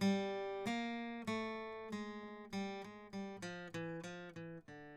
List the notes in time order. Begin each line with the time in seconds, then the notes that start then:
0.00 G3 B3
0.68 A#3
1.28 A3
1.93 G#3
2.53 G3
2.86 G#3
3.14 G3
3.43 F3
3.75 E3
4.05 F3
4.37 E3
4.69 D3